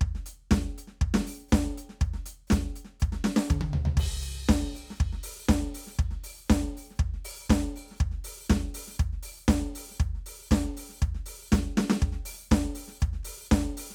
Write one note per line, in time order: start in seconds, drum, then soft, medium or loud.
0.01 kick loud
0.01 closed hi-hat soft
0.15 snare soft
0.26 closed hi-hat loud
0.51 closed hi-hat soft
0.51 kick loud
0.51 snare loud
0.78 closed hi-hat medium
0.88 snare soft
1.01 kick loud
1.01 closed hi-hat soft
1.14 snare loud
1.22 snare soft
1.27 open hi-hat loud
1.49 kick loud
1.49 snare loud
1.49 hi-hat pedal soft
1.55 closed hi-hat soft
1.78 closed hi-hat medium
1.89 snare soft
2.01 closed hi-hat soft
2.01 kick loud
2.14 snare soft
2.26 closed hi-hat loud
2.47 snare loud
2.47 hi-hat pedal soft
2.52 closed hi-hat medium
2.52 kick loud
2.76 closed hi-hat medium
2.85 snare soft
3.00 closed hi-hat medium
3.00 kick loud
3.12 snare medium
3.24 snare loud
3.36 snare loud
3.49 kick loud
3.49 hi-hat pedal medium
3.49 high tom loud
3.61 high tom loud
3.73 floor tom loud
3.85 floor tom loud
3.97 kick loud
3.97 crash loud
4.16 snare soft
4.22 closed hi-hat medium
4.47 kick loud
4.47 snare loud
4.47 hi-hat pedal soft
4.75 open hi-hat medium
4.90 snare soft
4.95 hi-hat pedal soft
5.00 kick loud
5.00 closed hi-hat soft
5.13 snare soft
5.23 open hi-hat loud
5.46 kick loud
5.46 snare loud
5.46 hi-hat pedal soft
5.50 closed hi-hat medium
5.74 open hi-hat loud
5.87 snare soft
5.95 hi-hat pedal soft
5.99 kick loud
5.99 closed hi-hat soft
6.11 snare soft
6.24 open hi-hat loud
6.47 kick loud
6.47 snare loud
6.47 hi-hat pedal soft
6.52 closed hi-hat medium
6.65 snare soft
6.77 open hi-hat medium
6.91 snare soft
6.95 kick loud
6.95 snare soft
6.95 hi-hat pedal soft
7.01 closed hi-hat soft
7.14 snare soft
7.25 open hi-hat loud
7.45 hi-hat pedal soft
7.50 kick loud
7.50 snare loud
7.50 closed hi-hat medium
7.58 snare soft
7.64 snare soft
7.66 snare soft
7.72 open hi-hat medium
7.72 snare soft
7.91 snare soft
7.96 kick loud
7.96 hi-hat pedal soft
8.01 closed hi-hat soft
8.11 snare soft
8.16 snare soft
8.24 open hi-hat loud
8.46 snare loud
8.46 closed hi-hat medium
8.46 hi-hat pedal soft
8.50 kick loud
8.57 snare soft
8.74 open hi-hat loud
8.88 snare soft
8.92 snare soft
8.92 hi-hat pedal soft
8.99 kick loud
8.99 closed hi-hat medium
9.13 snare soft
9.23 open hi-hat loud
9.44 kick loud
9.44 snare loud
9.44 hi-hat pedal soft
9.49 closed hi-hat medium
9.56 snare soft
9.61 snare soft
9.66 kick soft
9.75 open hi-hat loud
9.91 snare soft
9.96 kick loud
9.96 hi-hat pedal soft
10.01 closed hi-hat soft
10.15 snare soft
10.21 snare soft
10.26 open hi-hat loud
10.48 kick loud
10.48 snare loud
10.48 hi-hat pedal soft
10.52 closed hi-hat medium
10.77 open hi-hat loud
10.89 snare soft
10.99 kick loud
10.99 closed hi-hat medium
10.99 hi-hat pedal soft
11.15 snare soft
11.26 open hi-hat loud
11.50 closed hi-hat medium
11.50 kick loud
11.50 snare loud
11.50 hi-hat pedal soft
11.77 snare loud
11.90 snare loud
12.00 kick loud
12.00 closed hi-hat soft
12.00 hi-hat pedal soft
12.12 snare soft
12.25 open hi-hat loud
12.49 kick loud
12.49 snare loud
12.49 closed hi-hat soft
12.49 hi-hat pedal soft
12.75 open hi-hat loud
12.88 snare soft
12.96 closed hi-hat medium
12.96 hi-hat pedal soft
13.02 kick loud
13.13 snare soft
13.23 open hi-hat loud
13.23 kick soft
13.47 hi-hat pedal soft
13.51 kick loud
13.51 snare loud
13.51 closed hi-hat medium
13.59 snare soft
13.68 snare soft
13.77 open hi-hat loud
13.90 snare soft